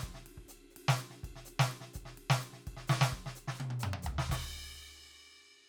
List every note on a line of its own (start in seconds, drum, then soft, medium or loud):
0.01 kick soft
0.01 hi-hat pedal medium
0.01 ride bell soft
0.10 kick soft
0.13 kick soft
0.13 snare soft
0.22 hi-hat pedal soft
0.27 snare soft
0.27 ride medium
0.35 kick soft
0.35 snare soft
0.39 snare soft
0.43 snare soft
0.46 snare soft
0.46 hi-hat pedal medium
0.52 ride bell soft
0.71 hi-hat pedal soft
0.77 ride medium
0.89 snare loud
0.97 hi-hat pedal medium
0.97 ride medium
1.11 snare soft
1.18 hi-hat pedal soft
1.24 kick soft
1.24 ride bell soft
1.30 kick soft
1.36 snare soft
1.46 hi-hat pedal loud
1.46 ride soft
1.60 snare loud
1.67 hi-hat pedal soft
1.72 ride medium
1.81 snare soft
1.94 kick soft
1.94 hi-hat pedal medium
1.94 ride bell soft
2.05 kick soft
2.05 snare soft
2.14 hi-hat pedal soft
2.14 ride medium
2.31 snare loud
2.41 hi-hat pedal medium
2.41 ride medium
2.54 snare soft
2.61 hi-hat pedal soft
2.68 kick soft
2.68 ride bell soft
2.73 kick soft
2.77 kick soft
2.77 snare medium
2.88 snare loud
2.88 hi-hat pedal loud
3.02 snare loud
3.09 kick soft
3.09 hi-hat pedal soft
3.14 ride bell soft
3.19 kick soft
3.27 snare medium
3.36 hi-hat pedal medium
3.36 ride bell soft
3.48 snare medium
3.56 hi-hat pedal medium
3.61 high tom loud
3.71 high tom medium
3.80 hi-hat pedal loud
3.80 mid tom loud
4.03 kick soft
4.03 hi-hat pedal loud
4.03 floor tom medium
4.11 kick soft
4.14 kick soft
4.19 snare loud
4.30 kick medium
4.30 snare medium
4.30 hi-hat pedal loud
4.30 crash loud
4.36 kick soft
4.42 kick soft